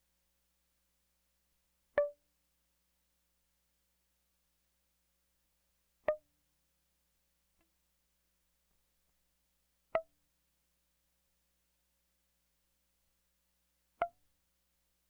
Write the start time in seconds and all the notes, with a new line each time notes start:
1.97 D5
6.08 D#5
9.95 E5
14.02 F5